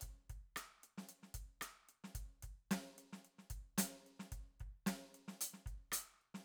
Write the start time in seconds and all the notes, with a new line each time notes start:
0.01 kick, closed hi-hat
0.29 kick, closed hi-hat
0.56 cross-stick, closed hi-hat
0.83 closed hi-hat
0.98 snare
1.09 closed hi-hat
1.23 snare
1.34 kick, closed hi-hat
1.61 cross-stick, closed hi-hat
1.89 closed hi-hat
2.04 snare
2.15 kick, closed hi-hat
2.43 kick, closed hi-hat
2.71 snare, closed hi-hat
2.98 closed hi-hat
3.13 snare
3.25 closed hi-hat
3.38 snare
3.50 kick, closed hi-hat
3.78 closed hi-hat, snare
4.06 closed hi-hat
4.19 snare
4.32 kick, closed hi-hat
4.60 kick, closed hi-hat
4.86 snare, closed hi-hat
5.14 closed hi-hat
5.28 snare
5.41 closed hi-hat
5.53 snare
5.66 kick, closed hi-hat
5.92 closed hi-hat, cross-stick
6.21 closed hi-hat
6.34 snare